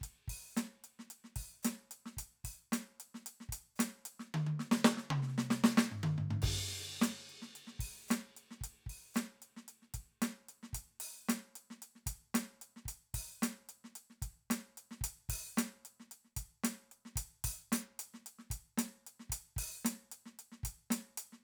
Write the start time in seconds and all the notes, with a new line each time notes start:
0.01 kick, closed hi-hat
0.28 kick, open hi-hat
0.56 snare, closed hi-hat, hi-hat pedal
0.84 closed hi-hat
0.99 snare
1.10 closed hi-hat
1.24 snare
1.36 kick, open hi-hat
1.63 snare, closed hi-hat, hi-hat pedal
1.91 closed hi-hat
2.06 snare
2.17 kick, closed hi-hat
2.44 kick, open hi-hat
2.72 snare, closed hi-hat, hi-hat pedal
3.00 closed hi-hat
3.14 snare
3.26 closed hi-hat
3.40 snare
3.49 kick, closed hi-hat
3.76 snare, hi-hat pedal
3.80 closed hi-hat
4.05 closed hi-hat
4.19 snare
4.34 high tom
4.46 high tom
4.59 snare
4.71 snare
4.84 snare
4.97 snare
5.10 mid tom
5.22 snare
5.27 snare
5.32 snare
5.38 snare
5.50 snare
5.64 snare
5.77 snare
5.91 floor tom
6.03 high tom
6.18 floor tom
6.30 floor tom
6.42 kick, ride
7.01 snare, closed hi-hat
7.29 closed hi-hat
7.42 snare
7.55 closed hi-hat
7.67 snare
7.79 kick, open hi-hat
8.08 snare, closed hi-hat, hi-hat pedal
8.36 closed hi-hat
8.51 snare
8.61 kick, closed hi-hat
8.86 kick, open hi-hat
9.14 snare, closed hi-hat, hi-hat pedal
9.42 closed hi-hat
9.56 snare
9.68 closed hi-hat
9.82 snare
9.94 kick, closed hi-hat
10.22 snare, closed hi-hat
10.48 closed hi-hat
10.63 snare
10.73 kick, closed hi-hat
11.00 open hi-hat
11.29 snare, closed hi-hat, hi-hat pedal
11.55 closed hi-hat
11.70 snare
11.82 closed hi-hat
11.95 snare
12.06 kick, closed hi-hat
12.34 snare, closed hi-hat
12.61 closed hi-hat
12.76 snare
12.85 kick, closed hi-hat
13.14 kick, open hi-hat
13.42 snare, closed hi-hat, hi-hat pedal
13.69 closed hi-hat
13.84 snare
13.95 closed hi-hat
14.10 snare
14.22 kick, closed hi-hat
14.50 snare, closed hi-hat
14.77 closed hi-hat
14.91 snare
15.01 kick, closed hi-hat
15.29 kick, open hi-hat
15.57 snare, closed hi-hat, hi-hat pedal
15.85 closed hi-hat
16.00 snare
16.11 closed hi-hat
16.24 snare
16.36 kick, closed hi-hat
16.64 snare, closed hi-hat
16.91 closed hi-hat
17.05 snare
17.16 kick, closed hi-hat
17.44 kick, open hi-hat
17.72 snare, hi-hat pedal, open hi-hat
17.99 closed hi-hat
18.14 snare
18.26 closed hi-hat
18.39 snare
18.50 kick, closed hi-hat
18.77 snare, closed hi-hat
19.06 closed hi-hat
19.20 snare
19.29 kick, closed hi-hat
19.56 kick, open hi-hat
19.85 snare, closed hi-hat, hi-hat pedal
20.11 closed hi-hat
20.26 snare
20.39 closed hi-hat
20.52 snare
20.63 kick, closed hi-hat
20.90 snare, closed hi-hat
21.17 closed hi-hat
21.32 snare